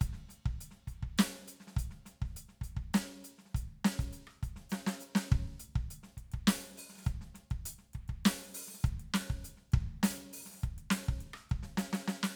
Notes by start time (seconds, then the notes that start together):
0.01 closed hi-hat, kick
0.13 snare
0.29 closed hi-hat, snare
0.45 kick, closed hi-hat
0.61 closed hi-hat
0.71 snare
0.87 closed hi-hat, kick, snare
1.03 kick
1.18 closed hi-hat, snare
1.26 snare
1.35 snare
1.39 snare
1.48 closed hi-hat
1.60 snare
1.67 snare
1.71 snare
1.77 closed hi-hat, kick
1.91 snare
2.06 closed hi-hat, snare
2.21 kick, snare, closed hi-hat
2.28 snare
2.36 closed hi-hat
2.49 snare
2.61 closed hi-hat, kick
2.77 kick, closed hi-hat
2.94 closed hi-hat, snare
3.08 snare
3.24 closed hi-hat
3.38 snare
3.46 snare
3.50 snare
3.55 closed hi-hat, kick
3.85 snare
3.99 closed hi-hat, kick, snare
4.13 closed hi-hat
4.27 cross-stick
4.43 closed hi-hat, kick
4.56 snare
4.70 snare, hi-hat pedal
4.87 snare
5.00 hi-hat pedal
5.15 snare
5.32 kick
5.60 closed hi-hat
5.75 kick, snare
5.90 closed hi-hat
6.03 snare
6.17 kick, closed hi-hat
6.32 kick, closed hi-hat
6.47 open hi-hat, snare
6.77 open hi-hat
6.89 snare
6.95 snare
6.98 snare
7.00 snare
7.04 kick, closed hi-hat, hi-hat pedal
7.21 snare
7.35 snare, closed hi-hat
7.51 kick, closed hi-hat
7.66 closed hi-hat
7.78 snare
7.94 kick, closed hi-hat
8.08 kick, closed hi-hat
8.25 open hi-hat, snare
8.54 open hi-hat
8.68 snare
8.74 snare
8.77 snare
8.83 kick, snare, closed hi-hat, hi-hat pedal
9.00 closed hi-hat
9.14 snare
9.30 kick, closed hi-hat
9.44 closed hi-hat
9.57 snare
9.72 kick, closed hi-hat
10.03 open hi-hat, snare
10.11 snare
10.33 open hi-hat
10.46 snare
10.51 snare
10.53 snare
10.60 kick, hi-hat pedal
10.64 closed hi-hat
10.78 closed hi-hat
10.90 snare
11.06 kick, closed hi-hat
11.21 closed hi-hat
11.34 cross-stick
11.50 kick, closed hi-hat
11.63 snare
11.77 snare, hi-hat pedal
11.93 snare
12.08 snare
12.23 snare